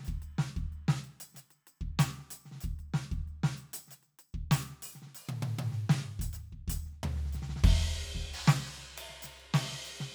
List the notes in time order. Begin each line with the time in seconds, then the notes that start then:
0.01 snare
0.04 snare, percussion
0.08 kick, snare, percussion
0.23 percussion
0.39 snare
0.57 kick, percussion
0.73 percussion
0.89 snare
1.05 percussion
1.21 percussion
1.35 snare, percussion
1.51 percussion
1.68 percussion
1.82 kick
2.00 snare, percussion
2.19 snare
2.31 percussion
2.46 snare
2.52 snare
2.56 snare
2.59 snare, percussion
2.64 kick, snare, percussion
2.80 percussion
2.95 snare
3.12 kick, percussion
3.28 percussion
3.44 snare
3.58 percussion
3.74 percussion
3.89 snare, percussion
4.04 percussion
4.20 percussion
4.35 kick
4.52 snare, percussion
4.71 snare
4.83 percussion
4.96 snare
5.03 snare
5.08 snare
5.16 percussion
5.30 high tom, percussion
5.43 high tom
5.59 high tom
5.73 snare
5.90 snare
6.05 snare
6.20 kick, percussion
6.34 snare, percussion
6.53 kick
6.69 kick, percussion
6.87 snare
6.93 snare
7.04 floor tom
7.17 snare
7.26 snare
7.31 snare, percussion
7.36 snare
7.43 snare
7.50 snare
7.57 snare
7.65 kick, ride
8.16 kick
8.35 crash
8.48 snare
8.79 snare
8.98 ride, percussion
9.10 snare
9.23 snare, ride, percussion
9.41 ride
9.55 snare, ride
9.73 snare
9.85 ride, percussion
10.01 snare